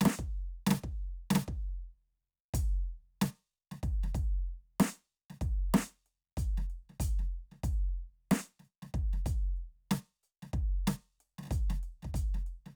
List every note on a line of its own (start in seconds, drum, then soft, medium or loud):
0.01 snare loud
0.05 snare loud
0.19 kick medium
0.67 snare loud
0.71 snare loud
0.84 kick medium
1.31 snare loud
1.35 snare loud
1.48 kick medium
2.54 kick medium
2.54 closed hi-hat loud
3.22 closed hi-hat medium
3.22 snare loud
3.71 snare soft
3.83 kick medium
3.83 closed hi-hat soft
4.04 snare soft
4.15 kick medium
4.15 closed hi-hat medium
4.47 closed hi-hat soft
4.80 closed hi-hat loud
4.80 snare loud
5.30 snare soft
5.41 kick medium
5.41 closed hi-hat soft
5.74 closed hi-hat medium
5.74 snare loud
6.06 closed hi-hat soft
6.37 closed hi-hat medium
6.37 kick medium
6.58 snare soft
6.70 closed hi-hat soft
6.89 snare soft
7.00 closed hi-hat loud
7.00 kick medium
7.19 snare soft
7.33 closed hi-hat soft
7.52 snare soft
7.64 kick medium
7.64 closed hi-hat medium
8.31 closed hi-hat loud
8.31 snare loud
8.60 snare soft
8.65 closed hi-hat soft
8.82 snare soft
8.94 kick medium
8.94 closed hi-hat soft
9.13 snare soft
9.26 closed hi-hat medium
9.26 kick medium
9.57 closed hi-hat soft
9.91 closed hi-hat medium
9.91 snare loud
10.23 closed hi-hat soft
10.42 snare soft
10.53 kick medium
10.53 closed hi-hat soft
10.87 closed hi-hat medium
10.87 snare loud
11.20 closed hi-hat soft
11.38 snare soft
11.43 snare soft
11.45 snare soft
11.47 kick medium
11.47 snare soft
11.52 closed hi-hat medium
11.70 snare medium
11.83 closed hi-hat soft
12.03 kick soft
12.03 snare soft
12.14 closed hi-hat medium
12.14 kick medium
12.34 snare soft
12.47 closed hi-hat soft
12.66 snare soft